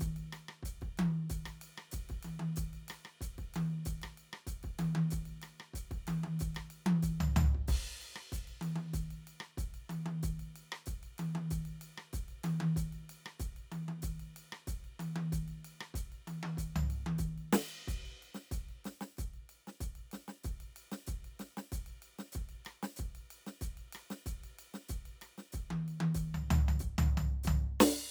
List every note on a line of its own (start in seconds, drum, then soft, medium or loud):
0.01 kick medium
0.01 hi-hat pedal medium
0.01 ride soft
0.17 ride soft
0.34 cross-stick medium
0.34 ride soft
0.49 cross-stick medium
0.64 kick medium
0.64 hi-hat pedal medium
0.64 ride soft
0.82 kick medium
0.82 ride soft
0.98 high tom loud
0.98 ride soft
1.30 kick medium
1.30 hi-hat pedal medium
1.30 ride medium
1.46 cross-stick medium
1.46 ride soft
1.62 ride medium
1.79 cross-stick medium
1.92 kick medium
1.92 hi-hat pedal medium
1.92 ride medium
2.10 kick soft
2.10 ride soft
2.24 high tom medium
2.24 ride medium
2.40 high tom medium
2.57 kick medium
2.57 hi-hat pedal medium
2.57 ride medium
2.74 ride soft
2.89 cross-stick medium
2.89 ride medium
3.06 cross-stick medium
3.22 kick medium
3.22 hi-hat pedal medium
3.22 ride soft
3.39 kick soft
3.39 ride soft
3.55 high tom loud
3.55 ride medium
3.86 kick medium
3.86 hi-hat pedal medium
3.86 ride soft
4.03 cross-stick medium
4.03 ride soft
4.18 ride soft
4.34 cross-stick medium
4.48 kick medium
4.48 hi-hat pedal medium
4.48 ride soft
4.64 kick medium
4.64 ride soft
4.80 high tom loud
4.80 ride medium
4.96 high tom loud
5.11 kick medium
5.11 hi-hat pedal medium
5.11 ride soft
5.26 ride soft
5.43 cross-stick medium
5.43 ride medium
5.61 cross-stick medium
5.74 kick soft
5.74 hi-hat pedal medium
5.74 ride soft
5.92 kick medium
5.92 ride soft
6.08 high tom medium
6.08 ride medium
6.24 high tom medium
6.40 kick medium
6.40 hi-hat pedal medium
6.40 ride soft
6.56 cross-stick medium
6.56 ride soft
6.71 ride medium
6.87 high tom loud
7.03 kick medium
7.03 hi-hat pedal medium
7.03 ride medium
7.21 floor tom loud
7.37 floor tom loud
7.55 kick soft
7.69 kick medium
7.69 hi-hat pedal medium
7.69 crash medium
7.69 ride medium
8.02 ride soft
8.17 cross-stick medium
8.33 kick medium
8.33 hi-hat pedal medium
8.33 ride soft
8.48 ride soft
8.62 high tom medium
8.62 ride medium
8.77 high tom medium
8.94 kick medium
8.94 hi-hat pedal medium
8.94 ride soft
9.11 ride soft
9.28 ride medium
9.41 cross-stick medium
9.58 kick medium
9.58 hi-hat pedal medium
9.58 ride soft
9.75 ride soft
9.90 high tom medium
9.90 ride soft
10.07 high tom medium
10.24 kick medium
10.24 hi-hat pedal medium
10.24 ride soft
10.40 ride soft
10.57 ride medium
10.73 cross-stick medium
10.87 kick medium
10.87 hi-hat pedal medium
10.87 ride soft
11.04 ride soft
11.19 high tom medium
11.19 ride medium
11.36 high tom medium
11.51 kick medium
11.51 hi-hat pedal medium
11.51 ride soft
11.66 ride soft
11.82 ride medium
11.99 cross-stick medium
12.14 kick medium
12.14 hi-hat pedal medium
12.14 ride soft
12.29 ride soft
12.44 high tom loud
12.44 ride medium
12.61 high tom loud
12.77 kick medium
12.77 hi-hat pedal medium
12.77 ride soft
12.93 ride soft
13.10 ride medium
13.27 cross-stick medium
13.40 kick medium
13.40 hi-hat pedal medium
13.40 ride soft
13.57 ride soft
13.73 high tom medium
13.73 ride soft
13.89 high tom medium
14.03 kick medium
14.03 hi-hat pedal medium
14.03 ride medium
14.20 ride soft
14.37 ride medium
14.53 cross-stick medium
14.68 kick medium
14.68 hi-hat pedal medium
14.68 ride soft
14.85 ride soft
15.00 high tom medium
15.00 ride medium
15.17 high tom medium
15.33 kick medium
15.33 hi-hat pedal medium
15.33 ride soft
15.49 ride soft
15.65 ride medium
15.82 cross-stick medium
15.95 kick medium
15.95 hi-hat pedal medium
15.95 ride soft
16.13 ride soft
16.28 high tom medium
16.28 ride medium
16.44 high tom medium
16.58 kick medium
16.58 hi-hat pedal medium
16.58 ride soft
16.77 floor tom loud
16.91 ride soft
17.07 high tom medium
17.19 kick medium
17.19 hi-hat pedal medium
17.19 ride soft
17.39 ride soft
17.53 snare loud
17.53 ride medium
17.88 kick medium
17.88 hi-hat pedal medium
17.88 ride soft
18.06 ride soft
18.23 ride soft
18.35 snare soft
18.52 kick medium
18.52 hi-hat pedal medium
18.52 ride soft
18.70 ride soft
18.85 snare medium
18.85 ride soft
19.02 snare medium
19.18 kick medium
19.18 hi-hat pedal medium
19.18 ride soft
19.35 ride soft
19.50 ride soft
19.68 snare soft
19.81 kick medium
19.81 hi-hat pedal medium
19.81 ride soft
19.96 ride soft
20.12 snare soft
20.12 ride soft
20.29 snare soft
20.44 kick medium
20.44 hi-hat pedal soft
20.44 ride soft
20.61 ride soft
20.77 ride medium
20.93 snare medium
21.07 kick medium
21.07 hi-hat pedal medium
21.07 ride soft
21.25 ride soft
21.40 snare soft
21.40 ride soft
21.58 snare medium
21.73 kick medium
21.73 hi-hat pedal medium
21.73 ride soft
21.87 ride soft
22.03 ride medium
22.20 snare soft
22.33 kick medium
22.33 hi-hat pedal medium
22.33 ride soft
22.50 ride soft
22.66 cross-stick medium
22.66 ride soft
22.84 snare medium
22.97 kick medium
22.97 hi-hat pedal medium
22.97 ride soft
23.16 ride soft
23.31 ride medium
23.47 snare soft
23.62 kick medium
23.62 hi-hat pedal medium
23.62 ride soft
23.78 ride soft
23.93 cross-stick medium
23.93 ride medium
24.11 snare medium
24.27 kick medium
24.27 hi-hat pedal medium
24.27 ride soft
24.44 ride soft
24.60 ride medium
24.75 snare soft
24.89 kick medium
24.89 hi-hat pedal medium
24.89 ride soft
25.06 ride soft
25.22 cross-stick soft
25.22 ride medium
25.39 snare soft
25.53 kick medium
25.53 hi-hat pedal medium
25.53 ride soft
25.71 high tom medium
25.89 ride soft
26.01 high tom loud
26.15 kick medium
26.15 hi-hat pedal medium
26.15 ride soft
26.35 floor tom medium
26.51 floor tom loud
26.69 floor tom medium
26.80 kick medium
26.80 hi-hat pedal medium
26.99 floor tom loud
27.18 floor tom medium
27.44 kick medium
27.44 floor tom loud
27.44 hi-hat pedal medium
27.81 snare loud
27.81 crash loud